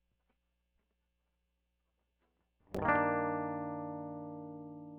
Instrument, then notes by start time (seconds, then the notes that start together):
electric guitar
2.77 G2
2.83 D#3 A#3
2.89 D4